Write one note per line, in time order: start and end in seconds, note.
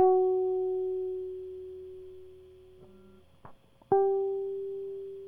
0.00 2.95 F#4
3.92 5.28 G4